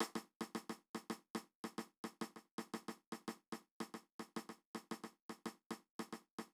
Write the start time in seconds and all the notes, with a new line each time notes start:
0.01 cross-stick
0.15 cross-stick
0.41 cross-stick
0.55 cross-stick
0.69 cross-stick
0.95 cross-stick
1.10 cross-stick
1.35 cross-stick
1.64 cross-stick
1.78 cross-stick
2.04 cross-stick
2.21 cross-stick
2.36 cross-stick
2.58 cross-stick
2.74 cross-stick
2.88 cross-stick
3.12 cross-stick
3.28 cross-stick
3.52 cross-stick
3.80 cross-stick
3.94 cross-stick
4.19 cross-stick
4.36 cross-stick
4.49 cross-stick
4.75 cross-stick
4.91 cross-stick
5.04 cross-stick
5.29 cross-stick
5.46 cross-stick
5.71 cross-stick
5.99 cross-stick
6.12 cross-stick
6.39 cross-stick